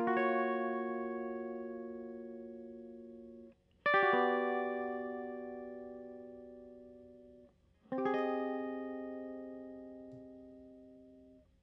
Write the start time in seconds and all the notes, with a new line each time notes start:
0.00 F4
0.08 F#4
0.17 C#5
3.87 D5
3.95 G4
4.04 F#4
4.14 B3
7.93 C4
7.99 G4
8.06 G#4